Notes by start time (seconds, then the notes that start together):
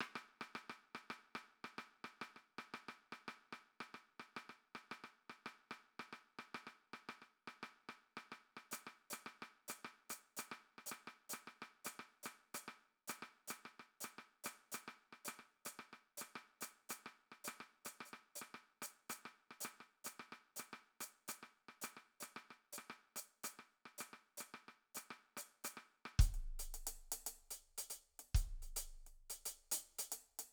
0.01 cross-stick
0.15 cross-stick
0.41 cross-stick
0.55 cross-stick
0.70 cross-stick
0.95 cross-stick
1.10 cross-stick
1.35 cross-stick
1.64 cross-stick
1.78 cross-stick
2.04 cross-stick
2.21 cross-stick
2.36 cross-stick
2.58 cross-stick
2.74 cross-stick
2.88 cross-stick
3.12 cross-stick
3.28 cross-stick
3.52 cross-stick
3.80 cross-stick
3.94 cross-stick
4.20 cross-stick
4.36 cross-stick
4.49 cross-stick
4.75 cross-stick
4.91 cross-stick
5.04 cross-stick
5.30 cross-stick
5.46 cross-stick
5.71 cross-stick
5.99 cross-stick
6.13 cross-stick
6.39 cross-stick
6.54 cross-stick
6.67 cross-stick
6.93 cross-stick
7.09 cross-stick
7.22 cross-stick
7.47 cross-stick
7.63 cross-stick
7.89 cross-stick
8.17 cross-stick
8.32 cross-stick
8.57 cross-stick
8.71 cross-stick, hi-hat pedal
8.87 cross-stick
9.10 cross-stick, hi-hat pedal
9.26 cross-stick
9.42 cross-stick
9.68 cross-stick, hi-hat pedal
9.85 cross-stick
10.10 cross-stick, hi-hat pedal
10.37 cross-stick, hi-hat pedal
10.51 cross-stick
10.78 cross-stick
10.86 hi-hat pedal
10.91 cross-stick
11.07 cross-stick
11.29 cross-stick, hi-hat pedal
11.47 cross-stick
11.62 cross-stick
11.85 cross-stick, hi-hat pedal
11.99 cross-stick
12.23 cross-stick, hi-hat pedal
12.54 cross-stick, hi-hat pedal
12.68 cross-stick
13.07 cross-stick, hi-hat pedal
13.22 cross-stick
13.47 cross-stick, hi-hat pedal
13.65 cross-stick
13.79 cross-stick
14.00 cross-stick, hi-hat pedal
14.18 cross-stick
14.44 cross-stick, hi-hat pedal
14.72 cross-stick, hi-hat pedal
14.88 cross-stick
15.12 cross-stick
15.25 cross-stick, hi-hat pedal
15.39 cross-stick
15.65 cross-stick, hi-hat pedal
15.79 cross-stick
15.93 cross-stick
16.17 cross-stick, hi-hat pedal
16.35 cross-stick
16.61 cross-stick, hi-hat pedal
16.89 cross-stick, hi-hat pedal
17.06 cross-stick
17.32 cross-stick
17.44 cross-stick, hi-hat pedal
17.60 cross-stick
17.85 cross-stick, hi-hat pedal
18.00 cross-stick
18.05 hi-hat pedal
18.13 cross-stick
18.35 hi-hat pedal
18.41 cross-stick
18.54 cross-stick
18.82 cross-stick, hi-hat pedal
19.09 cross-stick, hi-hat pedal
19.25 cross-stick
19.51 cross-stick
19.60 hi-hat pedal
19.65 cross-stick
19.80 cross-stick
20.04 cross-stick, hi-hat pedal
20.19 cross-stick
20.32 cross-stick
20.56 cross-stick, hi-hat pedal
20.73 cross-stick
21.00 cross-stick, hi-hat pedal
21.28 cross-stick, hi-hat pedal
21.43 cross-stick
21.68 cross-stick
21.81 cross-stick, hi-hat pedal
21.97 cross-stick
22.20 cross-stick, hi-hat pedal
22.36 cross-stick
22.50 cross-stick
22.72 hi-hat pedal
22.78 cross-stick
22.90 cross-stick
23.16 cross-stick, hi-hat pedal
23.44 cross-stick, hi-hat pedal
23.59 cross-stick
23.85 cross-stick
23.98 cross-stick, hi-hat pedal
24.13 cross-stick
24.37 cross-stick, hi-hat pedal
24.54 cross-stick
24.68 cross-stick
24.95 cross-stick, hi-hat pedal
25.10 cross-stick
25.37 cross-stick, hi-hat pedal
25.64 cross-stick, hi-hat pedal
25.77 cross-stick
26.05 cross-stick
26.19 closed hi-hat, kick
26.34 closed hi-hat
26.59 closed hi-hat
26.74 closed hi-hat
26.87 closed hi-hat
27.12 closed hi-hat
27.26 closed hi-hat
27.51 closed hi-hat
27.78 closed hi-hat
27.90 closed hi-hat
28.19 closed hi-hat
28.34 closed hi-hat, kick
28.62 closed hi-hat
28.76 closed hi-hat
29.06 closed hi-hat
29.30 closed hi-hat
29.45 closed hi-hat
29.71 closed hi-hat
29.99 closed hi-hat
30.12 closed hi-hat
30.39 closed hi-hat